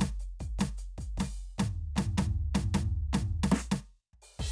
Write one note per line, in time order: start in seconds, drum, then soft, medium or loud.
0.01 open hi-hat loud
0.01 kick medium
0.01 snare loud
0.01 hi-hat pedal medium
0.21 open hi-hat medium
0.21 hi-hat pedal soft
0.41 open hi-hat medium
0.41 kick medium
0.41 hi-hat pedal medium
0.60 closed hi-hat medium
0.60 kick medium
0.60 snare loud
0.78 closed hi-hat medium
0.78 hi-hat pedal soft
0.99 closed hi-hat medium
0.99 kick medium
0.99 hi-hat pedal soft
1.19 open hi-hat loud
1.19 kick medium
1.19 snare loud
1.59 kick medium
1.59 snare loud
1.59 mid tom loud
1.97 kick soft
1.97 snare loud
1.97 mid tom loud
2.19 kick medium
2.19 snare loud
2.19 mid tom loud
2.56 kick soft
2.56 snare loud
2.56 mid tom loud
2.75 kick soft
2.75 snare loud
2.75 mid tom loud
3.14 kick soft
3.14 snare loud
3.14 mid tom loud
3.44 snare loud
3.53 snare loud
3.73 snare loud
4.14 kick soft
4.23 open hi-hat medium
4.38 kick soft
4.40 kick medium
4.40 crash loud